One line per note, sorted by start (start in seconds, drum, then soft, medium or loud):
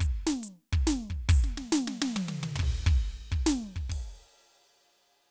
0.01 closed hi-hat loud
0.01 kick medium
0.27 snare loud
0.44 closed hi-hat loud
0.73 kick medium
0.88 open hi-hat loud
0.88 snare loud
1.11 kick soft
1.29 open hi-hat loud
1.29 kick loud
1.44 snare soft
1.44 hi-hat pedal soft
1.58 snare medium
1.73 snare loud
1.73 hi-hat pedal medium
1.88 snare medium
2.02 snare loud
2.17 high tom loud
2.29 high tom medium
2.42 kick soft
2.42 mid tom loud
2.56 kick medium
2.56 floor tom loud
2.63 crash medium
2.87 kick loud
3.32 kick medium
3.47 snare loud
3.47 ride medium
3.76 kick soft
3.90 kick medium
3.90 ride loud
4.78 ride soft